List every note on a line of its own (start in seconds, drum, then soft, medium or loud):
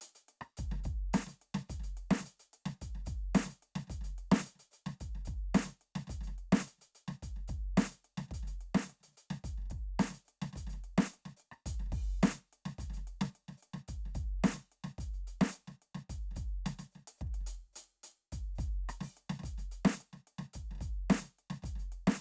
0.01 closed hi-hat loud
0.15 closed hi-hat medium
0.28 closed hi-hat soft
0.41 cross-stick medium
0.57 closed hi-hat medium
0.57 kick soft
0.64 kick soft
0.67 kick soft
0.71 snare soft
0.79 snare soft
0.84 closed hi-hat medium
0.84 kick soft
1.13 closed hi-hat loud
1.13 snare medium
1.27 closed hi-hat medium
1.27 snare soft
1.41 closed hi-hat soft
1.54 snare medium
1.69 closed hi-hat medium
1.69 kick soft
1.69 snare soft
1.75 kick soft
1.80 closed hi-hat medium
1.80 snare soft
1.84 snare soft
1.88 snare soft
1.97 closed hi-hat soft
2.11 snare loud
2.20 snare soft
2.25 closed hi-hat medium
2.39 closed hi-hat medium
2.53 closed hi-hat medium
2.66 snare medium
2.81 closed hi-hat medium
2.81 kick soft
2.95 snare soft
3.00 snare soft
3.05 closed hi-hat medium
3.05 kick soft
3.05 hi-hat pedal soft
3.16 kick soft
3.34 closed hi-hat loud
3.34 snare loud
3.45 snare soft
3.50 open hi-hat medium
3.62 closed hi-hat soft
3.75 snare medium
3.87 closed hi-hat medium
3.87 kick soft
3.87 snare soft
4.01 closed hi-hat medium
4.01 snare soft
4.06 snare soft
4.18 closed hi-hat soft
4.31 snare loud
4.39 snare soft
4.46 closed hi-hat medium
4.55 snare soft
4.59 closed hi-hat medium
4.71 closed hi-hat medium
4.71 hi-hat pedal soft
4.86 snare medium
5.00 closed hi-hat medium
5.00 kick soft
5.15 snare soft
5.21 snare soft
5.25 closed hi-hat medium
5.25 kick soft
5.35 kick soft
5.54 closed hi-hat medium
5.54 snare loud
5.65 closed hi-hat soft
5.65 snare soft
5.81 closed hi-hat soft
5.95 snare medium
6.07 closed hi-hat medium
6.07 kick soft
6.07 snare soft
6.15 kick soft
6.21 closed hi-hat soft
6.21 snare soft
6.27 snare soft
6.38 closed hi-hat soft
6.52 snare loud
6.60 snare soft
6.67 closed hi-hat medium
6.78 closed hi-hat medium
6.78 snare soft
6.95 closed hi-hat medium
7.08 snare medium
7.22 closed hi-hat medium
7.22 kick soft
7.36 snare soft
7.48 closed hi-hat medium
7.48 kick soft
7.57 kick soft
7.77 closed hi-hat medium
7.77 snare loud
7.87 snare soft
7.91 closed hi-hat medium
8.04 closed hi-hat soft
8.17 snare medium
8.28 kick soft
8.28 snare soft
8.34 closed hi-hat medium
8.34 kick soft
8.43 snare soft
8.47 closed hi-hat medium
8.47 snare soft
8.61 closed hi-hat soft
8.74 snare loud
8.85 snare soft
8.89 closed hi-hat soft
9.00 open hi-hat soft
9.00 snare soft
9.04 snare soft
9.08 snare soft
9.12 hi-hat pedal soft
9.17 closed hi-hat medium
9.30 snare medium
9.44 closed hi-hat medium
9.44 kick soft
9.50 kick soft
9.57 snare soft
9.62 snare soft
9.65 snare soft
9.70 kick soft
9.70 closed hi-hat medium
9.99 closed hi-hat medium
9.99 snare loud
10.10 closed hi-hat medium
10.10 snare soft
10.25 closed hi-hat soft
10.25 hi-hat pedal soft
10.42 snare medium
10.53 kick soft
10.53 snare soft
10.57 closed hi-hat medium
10.67 closed hi-hat medium
10.67 snare soft
10.73 snare soft
10.84 closed hi-hat soft
10.98 snare loud
11.13 closed hi-hat soft
11.25 snare soft
11.36 closed hi-hat soft
11.36 hi-hat pedal soft
11.51 cross-stick medium
11.66 closed hi-hat loud
11.66 kick soft
11.72 kick soft
11.79 snare soft
11.86 snare soft
11.90 open hi-hat medium
11.90 kick soft
11.90 snare soft
11.98 kick soft
12.02 kick soft
12.20 closed hi-hat loud
12.20 snare loud
12.20 hi-hat pedal soft
12.31 snare soft
12.53 closed hi-hat soft
12.65 snare medium
12.78 closed hi-hat medium
12.78 kick soft
12.78 snare soft
12.90 closed hi-hat medium
12.90 snare soft
12.97 snare soft
13.07 closed hi-hat soft
13.21 snare medium
13.35 closed hi-hat soft
13.48 snare soft
13.57 hi-hat pedal soft
13.63 closed hi-hat soft
13.73 snare soft
13.88 closed hi-hat medium
13.88 kick soft
14.05 snare soft
14.14 closed hi-hat medium
14.14 kick soft
14.14 snare soft
14.21 kick soft
14.24 kick soft
14.44 closed hi-hat medium
14.44 snare loud
14.54 snare soft
14.59 open hi-hat soft
14.72 closed hi-hat soft
14.84 snare medium
14.98 closed hi-hat medium
14.98 kick soft
15.04 kick soft
15.14 closed hi-hat soft
15.27 closed hi-hat medium
15.41 snare loud
15.50 hi-hat pedal medium
15.55 closed hi-hat soft
15.67 snare soft
15.82 closed hi-hat soft
15.94 snare soft
16.09 closed hi-hat medium
16.09 kick soft
16.31 snare soft
16.35 closed hi-hat medium
16.35 kick soft
16.35 snare soft
16.44 kick soft
16.66 closed hi-hat medium
16.66 snare medium
16.79 closed hi-hat medium
16.79 snare soft
16.92 snare soft
16.92 hi-hat pedal soft
17.07 closed hi-hat medium
17.17 kick soft
17.17 hi-hat pedal soft
17.27 kick soft
17.34 closed hi-hat soft
17.40 snare soft
17.46 closed hi-hat loud
17.73 closed hi-hat loud
17.73 hi-hat pedal soft
18.03 closed hi-hat medium
18.32 closed hi-hat medium
18.32 kick soft
18.55 kick soft
18.55 hi-hat pedal soft
18.60 closed hi-hat medium
18.65 kick soft
18.67 kick soft
18.89 closed hi-hat medium
18.89 cross-stick medium
19.00 open hi-hat medium
19.00 snare soft
19.13 closed hi-hat soft
19.13 hi-hat pedal soft
19.29 snare medium
19.39 snare soft
19.43 closed hi-hat medium
19.43 kick soft
19.58 closed hi-hat medium
19.58 snare soft
19.71 closed hi-hat medium
19.85 snare loud
19.93 snare soft
20.00 closed hi-hat medium
20.13 snare soft
20.27 closed hi-hat soft
20.38 snare soft
20.45 snare soft
20.53 closed hi-hat medium
20.53 kick soft
20.71 snare soft
20.75 snare soft
20.78 closed hi-hat medium
20.78 kick soft
20.78 snare soft
21.10 closed hi-hat medium
21.10 snare loud
21.21 closed hi-hat soft
21.21 snare soft
21.38 closed hi-hat soft
21.50 snare medium
21.62 closed hi-hat medium
21.62 kick soft
21.62 snare soft
21.69 kick soft
21.75 closed hi-hat soft
21.75 snare soft
21.81 snare soft
21.92 closed hi-hat soft
22.07 snare loud
22.13 snare soft
22.13 hi-hat pedal soft